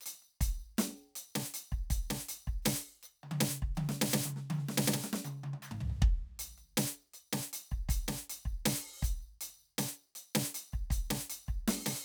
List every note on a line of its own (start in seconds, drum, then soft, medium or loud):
0.01 hi-hat pedal medium
0.06 closed hi-hat loud
0.22 closed hi-hat soft
0.41 closed hi-hat loud
0.41 kick medium
0.60 closed hi-hat soft
0.78 closed hi-hat loud
0.78 snare loud
0.78 hi-hat pedal soft
1.16 closed hi-hat loud
1.35 snare loud
1.54 closed hi-hat loud
1.72 kick soft
1.72 closed hi-hat soft
1.90 closed hi-hat loud
1.90 kick medium
2.10 snare medium
2.29 closed hi-hat loud
2.47 kick soft
2.47 closed hi-hat soft
2.62 snare loud
2.62 hi-hat pedal soft
2.62 percussion loud
3.03 hi-hat pedal medium
3.23 high tom medium
3.31 high tom loud
3.41 snare loud
3.41 hi-hat pedal medium
3.62 kick soft
3.75 hi-hat pedal soft
3.75 high tom loud
3.89 snare medium
4.02 snare loud
4.13 snare loud
4.25 high tom loud
4.36 snare medium
4.50 hi-hat pedal soft
4.50 high tom loud
4.59 snare soft
4.69 snare medium
4.78 snare loud
4.88 snare loud
4.94 snare medium
5.04 snare medium
5.13 snare loud
5.25 hi-hat pedal medium
5.25 high tom medium
5.44 high tom medium
5.53 high tom medium
5.62 percussion medium
5.62 hi-hat pedal medium
5.71 kick soft
5.71 mid tom loud
5.81 floor tom medium
5.90 floor tom soft
6.02 kick loud
6.39 closed hi-hat loud
6.58 closed hi-hat soft
6.77 closed hi-hat loud
6.77 snare loud
7.14 closed hi-hat medium
7.33 snare loud
7.53 closed hi-hat loud
7.71 kick soft
7.71 closed hi-hat soft
7.89 closed hi-hat loud
7.89 kick medium
8.08 snare medium
8.30 closed hi-hat loud
8.45 kick soft
8.66 snare loud
8.66 percussion loud
9.03 closed hi-hat loud
9.03 kick medium
9.03 hi-hat pedal medium
9.21 closed hi-hat soft
9.41 closed hi-hat loud
9.78 closed hi-hat loud
9.78 snare loud
10.15 closed hi-hat medium
10.35 snare loud
10.55 closed hi-hat loud
10.73 kick soft
10.73 closed hi-hat soft
10.90 closed hi-hat loud
10.90 kick medium
11.10 snare loud
11.30 closed hi-hat loud
11.47 kick soft
11.47 closed hi-hat soft
11.68 snare loud
11.68 percussion loud
11.86 snare loud
11.86 percussion loud